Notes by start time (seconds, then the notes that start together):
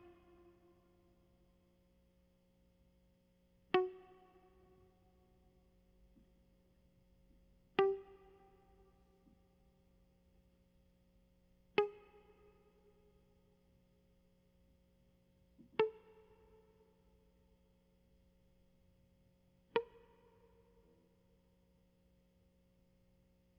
3.74 F#4
7.79 G4
11.78 G#4
15.80 A4
19.76 A#4